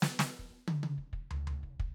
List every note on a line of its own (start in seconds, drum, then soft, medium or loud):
0.00 snare loud
0.00 hi-hat pedal medium
0.19 snare loud
0.39 kick soft
0.51 kick soft
0.68 high tom loud
0.83 high tom medium
0.98 kick soft
1.13 kick soft
1.31 floor tom loud
1.47 floor tom medium
1.63 kick soft
1.80 kick soft